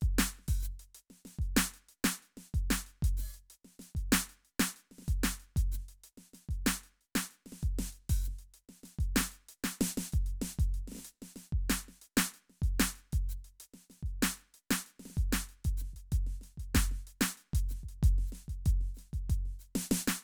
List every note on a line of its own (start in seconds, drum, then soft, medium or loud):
0.01 kick medium
0.01 closed hi-hat soft
0.18 snare loud
0.34 closed hi-hat soft
0.39 snare soft
0.48 open hi-hat medium
0.48 kick medium
0.62 hi-hat pedal loud
0.79 closed hi-hat medium
0.95 closed hi-hat medium
1.10 snare soft
1.25 snare soft
1.25 closed hi-hat soft
1.39 kick soft
1.39 closed hi-hat soft
1.56 snare loud
1.74 closed hi-hat soft
1.89 closed hi-hat soft
2.04 snare loud
2.22 closed hi-hat soft
2.37 snare soft
2.54 kick medium
2.54 closed hi-hat soft
2.70 snare medium
2.86 closed hi-hat soft
3.02 open hi-hat medium
3.02 kick medium
3.17 snare soft
3.17 hi-hat pedal medium
3.34 closed hi-hat soft
3.50 closed hi-hat medium
3.64 snare soft
3.79 snare soft
3.79 closed hi-hat medium
3.95 kick soft
3.95 closed hi-hat soft
4.12 snare loud
4.29 closed hi-hat soft
4.45 closed hi-hat soft
4.59 snare loud
4.76 closed hi-hat soft
4.91 snare soft
4.98 snare soft
5.02 snare soft
5.08 kick medium
5.08 closed hi-hat medium
5.23 snare medium
5.40 closed hi-hat soft
5.56 open hi-hat medium
5.56 kick medium
5.72 snare soft
5.72 hi-hat pedal medium
5.88 closed hi-hat soft
6.04 closed hi-hat medium
6.17 snare soft
6.33 snare soft
6.33 closed hi-hat soft
6.49 kick soft
6.49 closed hi-hat soft
6.66 snare loud
6.83 closed hi-hat soft
7.01 closed hi-hat soft
7.15 snare medium
7.31 closed hi-hat soft
7.46 snare soft
7.52 snare soft
7.62 kick medium
7.62 closed hi-hat soft
7.79 snare medium
7.92 closed hi-hat soft
8.09 open hi-hat medium
8.09 kick medium
8.23 hi-hat pedal medium
8.27 snare soft
8.39 closed hi-hat soft
8.54 closed hi-hat soft
8.69 snare soft
8.83 snare soft
8.83 closed hi-hat medium
8.99 kick medium
8.99 closed hi-hat soft
9.16 snare loud
9.20 snare soft
9.32 closed hi-hat medium
9.49 closed hi-hat medium
9.64 snare medium
9.81 snare loud
9.97 snare medium
10.12 kick medium
10.12 closed hi-hat medium
10.26 closed hi-hat soft
10.41 snare medium
10.59 kick medium
10.59 closed hi-hat medium
10.74 closed hi-hat soft
10.87 snare soft
10.92 snare soft
10.95 snare soft
10.96 snare soft
10.98 snare soft
11.05 closed hi-hat medium
11.22 snare soft
11.36 snare soft
11.36 closed hi-hat soft
11.52 kick medium
11.70 snare medium
11.70 closed hi-hat loud
11.88 snare soft
12.01 closed hi-hat medium
12.17 snare loud
12.34 closed hi-hat soft
12.49 snare soft
12.62 kick medium
12.62 closed hi-hat soft
12.80 snare loud
12.95 closed hi-hat soft
13.12 kick medium
13.12 open hi-hat medium
13.29 hi-hat pedal medium
13.44 closed hi-hat soft
13.60 closed hi-hat medium
13.74 snare soft
13.90 snare soft
13.90 closed hi-hat soft
14.03 kick soft
14.03 closed hi-hat soft
14.22 snare loud
14.37 closed hi-hat soft
14.54 closed hi-hat soft
14.71 snare loud
14.86 closed hi-hat soft
14.99 snare soft
15.05 snare soft
15.10 snare soft
15.17 kick medium
15.17 closed hi-hat soft
15.32 snare medium
15.49 closed hi-hat soft
15.64 kick medium
15.64 open hi-hat medium
15.77 hi-hat pedal medium
15.81 snare soft
15.93 kick soft
15.93 closed hi-hat soft
16.12 kick medium
16.12 closed hi-hat medium
16.26 snare soft
16.41 snare soft
16.41 closed hi-hat soft
16.57 kick soft
16.57 closed hi-hat soft
16.75 kick medium
16.75 snare loud
16.91 snare soft
17.07 closed hi-hat medium
17.21 snare loud
17.37 closed hi-hat soft
17.53 open hi-hat medium
17.53 kick medium
17.69 snare soft
17.69 hi-hat pedal medium
17.83 kick soft
17.89 closed hi-hat soft
18.03 open hi-hat medium
18.03 kick medium
18.18 snare soft
18.26 hi-hat pedal soft
18.32 snare soft
18.32 closed hi-hat soft
18.48 kick soft
18.48 closed hi-hat soft
18.66 open hi-hat medium
18.66 kick medium
18.81 snare soft
18.94 snare soft
18.94 hi-hat pedal soft
18.99 closed hi-hat soft
19.13 kick soft
19.13 closed hi-hat soft
19.30 open hi-hat medium
19.30 kick medium
19.45 snare soft
19.59 closed hi-hat soft
19.59 hi-hat pedal soft
19.75 snare medium
19.91 snare loud
20.07 snare medium